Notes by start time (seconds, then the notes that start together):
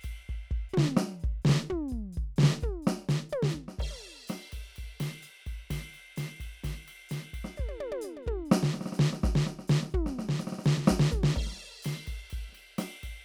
0.01 kick, hi-hat pedal, ride
0.10 kick
0.29 kick
0.35 kick
0.51 kick
0.60 kick
0.69 hi-hat pedal, floor tom
0.77 snare
0.97 snare
1.20 hi-hat pedal
1.24 kick
1.31 kick
1.33 kick
1.42 snare, hi-hat pedal
1.49 snare
1.58 snare
1.65 hi-hat pedal
1.69 kick, floor tom
1.88 kick, hi-hat pedal
1.97 kick
2.13 hi-hat pedal
2.17 kick
2.24 kick
2.36 snare, hi-hat pedal
2.43 snare
2.51 snare
2.61 kick, hi-hat pedal, mid tom
2.69 kick
2.82 hi-hat pedal
2.87 snare
3.09 snare, hi-hat pedal
3.24 snare
3.29 hi-hat pedal, high tom
3.43 snare
3.50 hi-hat pedal
3.54 kick
3.68 snare
3.79 kick, snare, hi-hat pedal, crash
3.85 kick
3.90 high tom
4.27 snare, hi-hat pedal, ride
4.52 kick, ride
4.58 kick
4.75 kick, hi-hat pedal, ride
4.84 kick
5.00 snare, ride
5.22 hi-hat pedal, ride
5.46 kick, ride
5.52 kick
5.70 kick, snare, hi-hat pedal, ride
5.90 snare
5.94 ride
6.16 snare, hi-hat pedal, ride
6.40 kick, ride
6.45 kick
6.63 kick, snare, hi-hat pedal, ride
6.70 kick
6.84 snare, ride
7.09 snare, hi-hat pedal, ride
7.33 kick, ride
7.39 kick
7.44 snare
7.56 kick, hi-hat pedal, high tom
7.66 kick, high tom
7.80 high tom
7.91 high tom
8.01 hi-hat pedal, high tom
8.16 high tom
8.23 kick, hi-hat pedal
8.27 mid tom
8.45 hi-hat pedal
8.52 snare
8.63 snare
8.69 hi-hat pedal
8.74 snare
8.81 snare
8.86 snare
8.92 snare, hi-hat pedal
8.99 snare
9.13 snare
9.22 kick, snare, hi-hat pedal
9.34 kick, snare
9.47 snare
9.59 snare
9.68 snare, hi-hat pedal
9.83 snare
9.90 kick, hi-hat pedal, floor tom
10.06 snare
10.13 hi-hat pedal
10.19 snare
10.29 snare
10.39 snare, hi-hat pedal
10.47 snare
10.52 snare
10.59 snare
10.64 snare, hi-hat pedal
10.77 snare
10.87 kick, snare, hi-hat pedal
10.96 kick, snare
11.11 kick, hi-hat pedal, mid tom
11.20 kick, snare
11.29 snare
11.35 kick, crash
11.44 kick, snare
11.52 snare
11.57 snare
11.82 snare, hi-hat pedal, ride
12.07 kick, ride
12.13 kick
12.30 kick, hi-hat pedal, ride
12.38 kick
12.49 snare
12.52 snare, ride
12.78 snare, hi-hat pedal, ride
13.03 kick, ride
13.09 kick